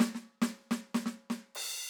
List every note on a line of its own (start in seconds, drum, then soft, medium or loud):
0.00 snare loud
0.15 snare medium
0.42 snare loud
0.71 snare loud
0.95 snare loud
1.06 snare medium
1.30 snare medium
1.55 crash loud